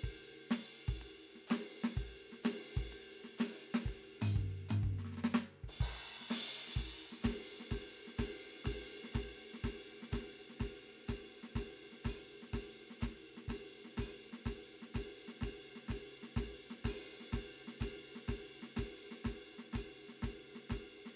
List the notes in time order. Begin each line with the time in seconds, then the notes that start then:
0.01 kick, hi-hat pedal, ride
0.36 snare
0.50 snare, hi-hat pedal, ride
0.88 kick, ride
0.93 snare
0.98 hi-hat pedal, ride
1.35 snare
1.47 snare, hi-hat pedal, ride
1.84 snare, ride
1.97 kick, ride
2.32 snare
2.44 snare, hi-hat pedal, ride
2.77 kick, ride
2.89 hi-hat pedal, ride
3.24 snare
3.38 snare, hi-hat pedal, ride
3.74 snare, ride
3.85 kick, ride
4.21 open hi-hat, floor tom
4.36 kick
4.69 open hi-hat, floor tom
4.83 kick
4.99 snare
5.05 snare
5.08 snare
5.12 snare
5.17 snare
5.24 snare
5.30 hi-hat pedal
5.34 snare
5.63 kick
5.68 ride
5.80 kick, crash
6.21 snare
6.30 snare, hi-hat pedal, ride
6.35 snare
6.67 snare, ride
6.76 kick, snare, ride
7.12 snare
7.23 kick, snare, hi-hat pedal, ride
7.29 snare
7.60 snare
7.69 kick, snare, hi-hat pedal, ride
8.07 snare
8.18 kick, snare, hi-hat pedal, ride
8.55 snare
8.64 kick, snare, ride
8.70 snare
9.04 snare
9.13 kick, snare, hi-hat pedal, ride
9.54 snare
9.64 kick, snare, ride
10.02 snare
10.12 kick, snare, hi-hat pedal, ride
10.20 snare
10.49 snare
10.60 kick, snare, ride
10.99 snare
11.08 kick, snare, hi-hat pedal, ride
11.43 snare
11.55 kick, snare, hi-hat pedal, ride
11.92 snare
12.05 kick, snare, hi-hat pedal, ride
12.42 snare
12.53 kick, snare, ride
12.90 snare
13.01 kick, snare, hi-hat pedal, ride
13.37 snare
13.48 kick, snare, ride
13.84 snare
13.97 kick, snare, hi-hat pedal, ride
14.33 snare
14.44 kick, snare, hi-hat pedal, ride
14.82 snare
14.94 kick, snare, hi-hat pedal, ride
15.28 snare
15.41 kick, snare, ride
15.76 snare
15.88 kick, snare, hi-hat pedal, ride
16.23 snare
16.36 kick, snare, ride
16.70 snare
16.84 kick, snare, hi-hat pedal, ride
17.20 snare
17.32 kick, snare, ride
17.67 snare
17.80 kick, snare, hi-hat pedal, ride
18.15 snare
18.26 kick, snare, hi-hat pedal, ride
18.62 snare
18.76 kick, snare, hi-hat pedal, ride
19.11 snare
19.23 kick, snare, hi-hat pedal, ride
19.58 snare
19.73 kick, snare, hi-hat pedal, ride
20.09 snare
20.22 kick, snare, hi-hat pedal, ride
20.55 snare
20.70 kick, snare, hi-hat pedal, ride
21.06 snare